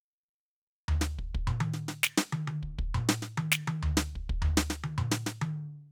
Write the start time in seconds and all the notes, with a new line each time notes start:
0.88 floor tom
1.01 snare
1.19 kick
1.35 kick
1.47 mid tom
1.60 high tom
1.74 snare
1.88 snare
2.03 snare
2.18 snare
2.32 high tom
2.47 high tom
2.63 kick
2.79 kick
2.94 mid tom
3.09 snare
3.22 snare
3.37 high tom
3.52 snare
3.67 high tom
3.83 floor tom
3.97 snare
4.15 kick
4.29 kick
4.42 floor tom
4.57 snare
4.70 snare
4.84 high tom
4.98 mid tom
5.12 snare
5.26 snare
5.41 high tom